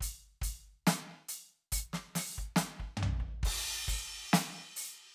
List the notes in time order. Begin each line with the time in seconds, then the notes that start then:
0.01 open hi-hat, kick
0.42 open hi-hat, kick
0.87 open hi-hat, snare
1.29 open hi-hat
1.72 open hi-hat, kick
1.94 snare
2.16 open hi-hat, snare
2.38 kick
2.56 open hi-hat, snare
2.80 kick
2.97 high tom
3.03 floor tom
3.20 kick
3.43 kick, crash, ride
3.88 open hi-hat, kick
4.34 open hi-hat, snare
4.77 open hi-hat